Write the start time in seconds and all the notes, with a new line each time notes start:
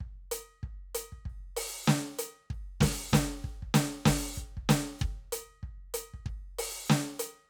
0.01 kick
0.32 closed hi-hat
0.64 kick
0.95 closed hi-hat
1.13 kick
1.26 kick
1.30 crash
1.57 open hi-hat
1.88 snare, hi-hat pedal
2.19 closed hi-hat
2.51 kick, crash
2.55 ride
2.81 open hi-hat, kick, snare
3.11 closed hi-hat, kick, snare, hi-hat pedal
3.45 kick
3.63 kick
3.75 closed hi-hat, snare
4.06 open hi-hat, kick, snare
4.37 kick, hi-hat pedal
4.57 kick
4.64 kick
4.69 closed hi-hat, snare, hi-hat pedal
4.99 kick, hi-hat pedal
5.33 closed hi-hat
5.63 kick
5.94 closed hi-hat
6.14 kick
6.26 kick, crash
6.59 open hi-hat
6.89 snare, hi-hat pedal
7.20 closed hi-hat